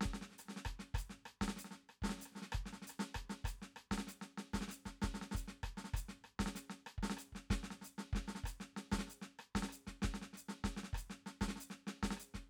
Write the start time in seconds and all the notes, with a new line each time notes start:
0.01 snare
0.05 kick
0.14 snare
0.21 snare
0.29 snare
0.31 snare
0.38 cross-stick, hi-hat pedal
0.46 snare
0.49 snare
0.56 snare
0.65 kick, cross-stick
0.79 snare
0.94 kick, cross-stick, hi-hat pedal
1.02 kick
1.10 snare
1.26 cross-stick
1.41 kick, snare
1.48 snare
1.57 snare, hi-hat pedal
1.65 snare
1.71 snare
1.89 cross-stick
2.02 kick, snare
2.10 snare
2.17 snare
2.21 hi-hat pedal
2.26 cross-stick
2.32 snare
2.35 snare
2.42 snare
2.52 kick, cross-stick
2.61 kick
2.66 snare
2.73 snare
2.82 snare
2.87 cross-stick, hi-hat pedal
2.99 snare
3.15 kick, cross-stick
3.30 snare
3.45 kick, cross-stick, hi-hat pedal
3.62 snare
3.76 cross-stick
3.91 kick, snare
3.98 snare
4.07 snare, hi-hat pedal
4.22 snare
4.38 snare
4.54 kick, snare
4.61 snare
4.68 snare, hi-hat pedal
4.86 kick, snare
5.02 kick, snare
5.14 snare
5.22 snare
5.32 kick, snare
5.37 hi-hat pedal
5.48 snare
5.63 kick, cross-stick
5.77 snare
5.84 snare
5.94 kick, cross-stick, hi-hat pedal
6.02 kick
6.09 snare
6.24 cross-stick
6.39 kick, snare
6.46 snare
6.55 snare, hi-hat pedal
6.70 snare
6.86 cross-stick
6.98 kick
7.03 snare
7.10 snare
7.17 cross-stick, hi-hat pedal
7.33 kick, snare
7.50 kick, snare
7.63 snare
7.71 snare
7.82 snare, hi-hat pedal
7.98 snare
8.13 kick, snare
8.21 kick
8.28 snare
8.35 snare
8.44 kick, cross-stick, hi-hat pedal
8.60 snare
8.77 snare
8.92 kick, snare
8.99 snare
9.07 snare, hi-hat pedal
9.22 snare
9.39 cross-stick
9.55 kick, snare
9.63 snare
9.69 cross-stick, hi-hat pedal
9.87 kick, snare
10.02 kick, snare
10.14 snare
10.22 snare
10.33 snare
10.37 hi-hat pedal
10.49 snare
10.64 kick, snare
10.77 snare
10.83 snare
10.93 kick, cross-stick
10.98 hi-hat pedal
11.10 snare
11.26 snare
11.41 kick, snare
11.48 snare
11.56 snare
11.60 hi-hat pedal
11.70 snare
11.87 snare
12.03 kick, snare
12.11 snare
12.17 cross-stick, hi-hat pedal
12.34 kick, snare